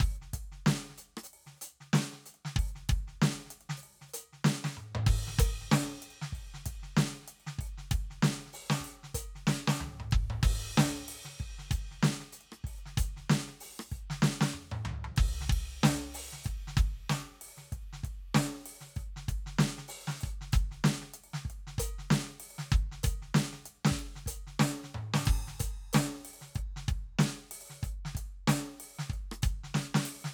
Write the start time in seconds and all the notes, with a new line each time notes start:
0.01 kick, open hi-hat
0.16 hi-hat pedal
0.22 snare
0.34 kick, closed hi-hat
0.53 snare
0.67 snare, hi-hat pedal
0.82 snare
0.90 snare
0.99 closed hi-hat
1.09 closed hi-hat
1.18 cross-stick
1.24 hi-hat pedal
1.34 open hi-hat
1.47 snare
1.57 snare, hi-hat pedal
1.62 closed hi-hat
1.81 snare
1.94 snare
2.13 snare
2.27 closed hi-hat
2.35 closed hi-hat
2.46 snare
2.57 kick, open hi-hat
2.69 hi-hat pedal
2.76 snare
2.90 kick, closed hi-hat
3.08 snare
3.23 snare
3.39 snare
3.47 snare
3.51 closed hi-hat
3.62 open hi-hat
3.70 snare
3.78 hi-hat pedal
3.84 open hi-hat
4.02 snare
4.09 hi-hat pedal
4.14 closed hi-hat
4.34 snare
4.45 snare
4.65 snare
4.78 hi-hat pedal, high tom
4.96 high tom
5.07 kick, crash
5.28 snare
5.40 kick, closed hi-hat
5.62 snare
5.72 snare, hi-hat pedal
5.87 snare
5.95 hi-hat pedal
6.03 closed hi-hat
6.11 closed hi-hat
6.23 snare
6.33 kick, open hi-hat
6.55 snare
6.67 kick, closed hi-hat
6.84 snare
6.98 snare, hi-hat pedal
7.12 snare
7.23 snare
7.29 closed hi-hat
7.41 open hi-hat
7.48 snare
7.59 kick, open hi-hat
7.67 hi-hat pedal
7.79 snare
7.92 kick, closed hi-hat
8.11 snare
8.23 snare
8.39 snare
8.47 snare
8.54 open hi-hat
8.63 open hi-hat
8.71 snare
8.81 kick
8.85 open hi-hat
8.91 hi-hat pedal
9.04 snare
9.15 closed hi-hat, kick
9.36 snare
9.48 snare
9.52 hi-hat pedal
9.68 snare
9.76 hi-hat pedal
9.81 floor tom
10.01 high tom
10.12 kick, ride
10.31 high tom
10.44 kick, crash
10.78 snare, hi-hat pedal
10.86 snare
11.09 open hi-hat
11.26 snare
11.41 kick, closed hi-hat
11.59 snare
11.72 closed hi-hat, kick
11.92 snare
12.04 snare
12.21 snare
12.33 closed hi-hat
12.42 open hi-hat
12.53 cross-stick
12.65 kick, snare, open hi-hat
12.79 hi-hat pedal
12.87 snare
12.98 closed hi-hat, kick
13.17 kick, snare
13.31 snare
13.48 snare
13.61 open hi-hat
13.80 cross-stick
13.93 kick, open hi-hat
14.11 snare
14.19 kick
14.23 snare
14.42 snare
14.54 mid tom
14.72 high tom
14.86 floor tom
15.05 floor tom
15.17 kick, crash
15.42 snare
15.50 kick, ride
15.84 snare, hi-hat pedal
16.15 open hi-hat
16.33 snare
16.46 kick, open hi-hat
16.68 snare
16.78 kick, closed hi-hat
17.10 snare, closed hi-hat
17.42 open hi-hat
17.49 open hi-hat
17.58 snare
17.72 kick, closed hi-hat, hi-hat pedal
17.94 snare
18.04 kick, closed hi-hat
18.35 snare
18.67 open hi-hat
18.76 open hi-hat
18.82 snare
18.97 kick, open hi-hat
19.17 snare
19.29 kick, closed hi-hat
19.47 snare
19.59 snare
19.79 snare
19.89 open hi-hat
20.08 snare
20.22 kick, open hi-hat
20.28 hi-hat pedal
20.42 snare
20.53 closed hi-hat, kick
20.72 snare
20.85 snare
21.02 snare
21.15 closed hi-hat
21.25 open hi-hat
21.34 snare
21.46 kick, hi-hat pedal
21.51 closed hi-hat
21.68 snare
21.79 closed hi-hat, kick
21.99 snare
22.10 snare, hi-hat pedal
22.26 snare
22.41 open hi-hat
22.51 open hi-hat
22.59 snare
22.73 kick, open hi-hat
22.93 snare
23.04 closed hi-hat, kick
23.23 snare
23.35 snare, hi-hat pedal
23.53 snare
23.66 closed hi-hat
23.86 snare
23.92 kick, hi-hat pedal
24.00 closed hi-hat
24.16 snare
24.27 closed hi-hat, kick
24.48 snare
24.60 snare
24.84 snare
24.95 high tom
25.15 snare
25.26 kick, crash
25.32 hi-hat pedal
25.48 snare
25.61 closed hi-hat, kick
25.94 closed hi-hat, snare
26.26 open hi-hat
26.34 open hi-hat
26.42 snare
26.56 kick, open hi-hat
26.77 snare
26.89 kick, closed hi-hat
27.09 kick
27.20 snare
27.52 open hi-hat
27.71 snare
27.84 kick, open hi-hat
28.06 snare
28.16 kick, closed hi-hat
28.48 closed hi-hat, snare
28.58 snare
28.81 open hi-hat
29.00 snare
29.11 kick, closed hi-hat
29.32 cross-stick
29.43 closed hi-hat, kick
29.64 snare
29.75 snare
29.95 snare
30.06 open hi-hat
30.25 snare